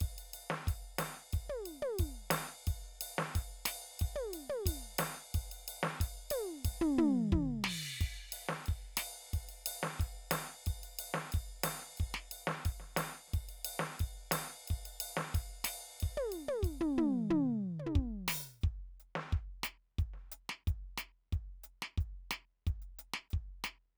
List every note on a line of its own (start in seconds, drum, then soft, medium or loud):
0.01 kick medium
0.01 ride medium
0.18 ride medium
0.34 ride medium
0.50 snare medium
0.68 kick medium
0.68 ride medium
0.99 snare medium
0.99 ride loud
1.33 kick medium
1.33 ride medium
1.50 high tom medium
1.66 ride medium
1.82 high tom loud
1.99 kick medium
1.99 ride medium
2.31 snare medium
2.31 ride loud
2.67 kick medium
2.67 ride medium
3.01 ride loud
3.19 snare medium
3.36 kick medium
3.36 ride medium
3.66 snare medium
3.66 ride loud
4.00 kick medium
4.00 ride medium
4.16 high tom medium
4.34 ride medium
4.50 closed hi-hat soft
4.50 high tom medium
4.66 kick medium
4.66 ride loud
4.99 snare medium
4.99 ride loud
5.35 kick medium
5.35 ride medium
5.52 ride medium
5.68 ride medium
5.83 snare medium
6.01 kick medium
6.01 ride medium
6.31 high tom loud
6.31 ride loud
6.65 kick medium
6.65 ride medium
6.81 floor tom loud
6.98 floor tom loud
7.32 kick medium
7.32 floor tom medium
7.64 snare loud
7.64 crash loud
8.01 kick medium
8.01 ride medium
8.32 ride medium
8.49 snare medium
8.66 kick medium
8.66 ride soft
8.97 snare medium
8.97 ride loud
9.34 kick soft
9.34 ride medium
9.49 ride soft
9.66 ride loud
9.83 snare medium
10.00 kick medium
10.00 ride medium
10.31 snare medium
10.31 ride loud
10.67 kick medium
10.67 ride medium
10.84 ride soft
10.99 ride loud
11.14 snare medium
11.32 kick medium
11.32 ride medium
11.64 snare medium
11.64 ride loud
11.82 snare soft
11.98 kick medium
11.98 ride soft
12.14 snare medium
12.32 ride medium
12.47 snare medium
12.65 kick medium
12.65 ride medium
12.80 snare soft
12.97 snare medium
12.97 ride loud
13.28 snare soft
13.34 kick medium
13.34 ride medium
13.49 ride soft
13.65 ride loud
13.80 snare medium
14.00 kick medium
14.00 ride medium
14.32 snare medium
14.32 ride loud
14.68 kick medium
14.68 ride medium
14.86 ride medium
15.01 ride loud
15.17 snare medium
15.35 kick medium
15.35 ride medium
15.65 snare medium
15.65 ride loud
16.01 kick medium
16.01 ride medium
16.17 high tom loud
16.32 ride medium
16.48 high tom loud
16.63 kick medium
16.63 ride medium
16.81 floor tom loud
16.98 floor tom loud
17.30 floor tom loud
17.80 high tom soft
17.86 floor tom medium
17.96 kick medium
18.28 open hi-hat loud
18.28 snare loud
18.61 kick medium
18.61 hi-hat pedal soft
19.00 closed hi-hat soft
19.16 snare medium
19.32 kick medium
19.32 closed hi-hat soft
19.64 closed hi-hat loud
19.64 snare medium
19.99 kick medium
19.99 closed hi-hat soft
20.14 snare soft
20.32 closed hi-hat medium
20.50 snare medium
20.68 kick medium
20.68 closed hi-hat medium
20.98 closed hi-hat medium
20.98 snare medium
21.33 kick medium
21.33 closed hi-hat soft
21.64 closed hi-hat medium
21.82 snare medium
21.98 kick medium
21.98 closed hi-hat soft
22.31 closed hi-hat medium
22.31 snare medium
22.67 kick medium
22.67 closed hi-hat soft
22.76 kick soft
22.82 closed hi-hat soft
22.99 closed hi-hat medium
23.14 snare medium
23.31 kick medium
23.31 closed hi-hat soft
23.64 closed hi-hat medium
23.64 snare medium